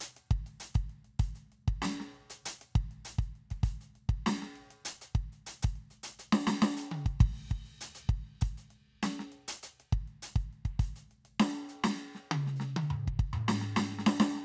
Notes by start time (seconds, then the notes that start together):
0.01 closed hi-hat
0.17 closed hi-hat
0.31 kick, closed hi-hat
0.47 closed hi-hat
0.60 closed hi-hat
0.75 closed hi-hat, kick
0.90 closed hi-hat
1.05 closed hi-hat
1.20 closed hi-hat, kick
1.35 closed hi-hat
1.52 closed hi-hat
1.68 kick
1.82 closed hi-hat, snare
2.00 snare
2.15 closed hi-hat
2.30 closed hi-hat
2.46 closed hi-hat
2.62 closed hi-hat
2.76 kick, closed hi-hat
2.92 closed hi-hat
3.05 closed hi-hat
3.19 closed hi-hat, kick
3.36 closed hi-hat
3.51 kick, closed hi-hat
3.64 closed hi-hat, kick
3.81 closed hi-hat
3.96 closed hi-hat
4.10 kick
4.27 closed hi-hat, snare
4.43 snare
4.56 closed hi-hat
4.71 closed hi-hat
4.86 closed hi-hat
5.02 closed hi-hat
5.16 kick, closed hi-hat
5.33 closed hi-hat
5.47 closed hi-hat
5.63 closed hi-hat, kick
5.76 closed hi-hat
5.91 closed hi-hat
6.04 closed hi-hat
6.20 closed hi-hat
6.33 snare
6.48 snare
6.63 snare
6.77 closed hi-hat
6.92 high tom
7.06 closed hi-hat, kick
7.20 kick, crash
7.36 closed hi-hat
7.50 closed hi-hat, kick
7.66 closed hi-hat
7.81 closed hi-hat
7.95 closed hi-hat
8.10 kick, closed hi-hat
8.27 closed hi-hat
8.42 closed hi-hat, kick
8.58 closed hi-hat
8.71 closed hi-hat
9.03 closed hi-hat, snare
9.20 snare
9.32 closed hi-hat
9.48 closed hi-hat
9.63 closed hi-hat
9.80 closed hi-hat
9.92 kick, closed hi-hat
10.08 closed hi-hat
10.23 closed hi-hat
10.36 closed hi-hat, kick
10.53 closed hi-hat
10.66 kick, closed hi-hat
10.80 closed hi-hat, kick
10.96 closed hi-hat
11.12 closed hi-hat
11.26 closed hi-hat
11.40 snare
11.56 closed hi-hat
11.70 closed hi-hat
11.84 snare
11.99 closed hi-hat
12.15 snare
12.32 high tom
12.47 snare
12.56 hi-hat pedal
12.61 snare
12.77 high tom
12.91 mid tom
13.08 kick
13.20 kick
13.34 mid tom
13.49 snare
13.62 snare
13.77 snare
13.92 snare
13.99 snare
14.07 snare
14.21 snare
14.36 snare